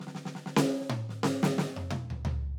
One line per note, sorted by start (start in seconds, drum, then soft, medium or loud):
0.00 snare soft
0.07 snare soft
0.15 snare medium
0.25 snare medium
0.35 snare medium
0.46 snare medium
0.56 snare loud
0.80 snare soft
0.90 high tom loud
1.09 snare soft
1.23 snare loud
1.43 snare loud
1.58 snare loud
1.76 mid tom loud
1.91 mid tom loud
2.10 floor tom medium
2.25 floor tom loud